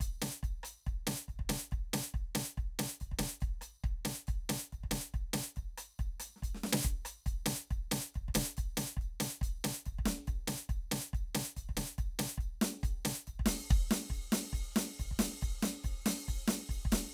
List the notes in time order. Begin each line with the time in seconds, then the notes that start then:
0.01 closed hi-hat, kick
0.22 closed hi-hat, snare
0.43 kick, closed hi-hat
0.64 closed hi-hat, cross-stick
0.87 kick, closed hi-hat
1.07 closed hi-hat, snare
1.29 kick, closed hi-hat
1.40 kick
1.50 closed hi-hat, snare
1.72 kick, closed hi-hat
1.94 closed hi-hat, snare
2.15 kick, closed hi-hat
2.36 closed hi-hat, snare
2.57 kick, snare, closed hi-hat
2.80 closed hi-hat, snare
3.01 closed hi-hat, kick
3.12 kick
3.19 closed hi-hat, snare
3.41 closed hi-hat, kick
3.62 closed hi-hat, cross-stick
3.84 kick, closed hi-hat
4.06 closed hi-hat, snare
4.18 snare
4.28 closed hi-hat, kick
4.50 closed hi-hat, snare
4.73 kick, closed hi-hat
4.84 kick
4.92 closed hi-hat, snare
5.14 kick, snare, closed hi-hat
5.34 closed hi-hat, snare
5.55 kick, snare, closed hi-hat
5.78 closed hi-hat, cross-stick
6.00 kick, closed hi-hat
6.20 closed hi-hat, cross-stick
6.29 snare
6.37 snare
6.43 closed hi-hat, kick
6.55 snare
6.64 snare
6.73 snare
6.84 closed hi-hat, kick, snare
7.06 closed hi-hat, cross-stick
7.27 closed hi-hat, kick
7.46 closed hi-hat, snare
7.71 kick, snare, closed hi-hat
7.92 closed hi-hat, snare
8.15 kick, closed hi-hat
8.29 kick
8.35 closed hi-hat, snare
8.55 closed hi-hat, kick, snare
8.78 closed hi-hat, snare
8.97 kick, snare
9.02 closed hi-hat
9.21 closed hi-hat, snare
9.42 closed hi-hat, kick, snare
9.65 closed hi-hat, snare
9.86 kick, snare, closed hi-hat
9.99 kick
10.06 closed hi-hat, snare
10.26 kick, snare, closed hi-hat
10.48 closed hi-hat, snare
10.70 kick, snare, closed hi-hat
10.92 closed hi-hat, snare
11.13 kick, snare, closed hi-hat
11.35 closed hi-hat, snare
11.57 closed hi-hat, kick
11.70 kick
11.77 closed hi-hat, snare
11.99 kick, closed hi-hat
12.20 closed hi-hat, snare
12.38 kick, closed hi-hat
12.62 closed hi-hat, snare
12.83 closed hi-hat, kick, snare
13.06 closed hi-hat, snare
13.28 kick, closed hi-hat
13.40 kick
13.47 snare, percussion
13.71 kick, percussion
13.92 snare, percussion
14.11 kick, percussion
14.33 snare, percussion
14.53 kick, percussion
14.77 snare, percussion
14.98 kick, snare, percussion
15.12 kick
15.20 snare, percussion
15.42 kick, percussion
15.63 snare, percussion
15.84 kick, percussion
16.06 snare, percussion
16.28 kick, percussion
16.48 snare, percussion
16.62 snare
16.70 kick, percussion
16.86 kick
16.92 snare, percussion
17.07 snare